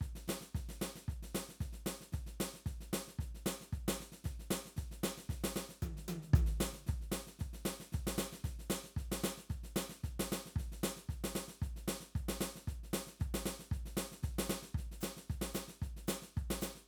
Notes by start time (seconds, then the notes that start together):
0.01 kick, snare
0.15 snare
0.28 snare
0.41 snare
0.55 kick, snare
0.69 snare
0.82 snare
0.96 snare
1.08 kick, snare
1.23 snare
1.35 snare
1.49 snare
1.61 kick, snare
1.73 snare
1.86 snare
2.01 snare
2.12 kick, snare
2.27 snare
2.40 snare
2.54 snare
2.66 kick, snare
2.81 snare
2.93 snare
3.08 snare
3.19 kick, snare
3.35 snare
3.46 snare
3.61 snare
3.73 kick, snare
3.88 snare
4.01 snare
4.12 snare
4.24 kick, snare
4.40 snare
4.51 snare
4.66 snare
4.77 kick, snare
4.91 snare
5.04 snare
5.18 snare
5.29 kick, snare
5.44 snare
5.56 snare
5.69 snare
5.82 kick, high tom
5.97 snare
6.08 high tom
6.22 snare
6.34 kick, high tom
6.46 snare
6.60 snare
6.73 snare
6.87 kick, snare
7.01 snare
7.12 snare
7.27 snare
7.39 kick, snare
7.53 snare
7.65 snare
7.80 snare
7.92 kick, snare
8.07 snare
8.18 snare
8.33 snare
8.44 kick, snare
8.59 snare
8.70 snare
8.84 snare
8.97 kick, snare
9.12 snare
9.24 snare
9.38 snare
9.50 kick, snare
9.64 snare
9.76 snare
9.90 snare
10.04 kick, snare
10.20 snare
10.32 snare
10.46 snare
10.56 kick, snare
10.72 snare
10.83 snare
10.97 snare
11.09 kick, snare
11.24 snare
11.35 snare
11.48 snare
11.62 kick, snare
11.76 snare
11.88 snare
12.01 snare
12.15 kick, snare
12.29 snare
12.41 snare
12.56 snare
12.68 kick, snare
12.84 snare
12.93 snare
13.07 snare
13.20 kick, snare
13.34 snare
13.46 snare
13.60 snare
13.71 kick, snare
13.86 snare
13.97 snare
14.12 snare
14.23 kick, snare
14.39 snare
14.50 snare
14.63 snare
14.75 kick, snare
14.92 snare
15.01 snare, hi-hat pedal
15.17 snare
15.30 kick, snare
15.42 snare
15.54 snare, hi-hat pedal
15.68 snare
15.82 kick, snare
15.97 snare
16.08 snare, hi-hat pedal
16.22 snare
16.37 kick, snare
16.50 snare
16.62 snare, hi-hat pedal
16.75 snare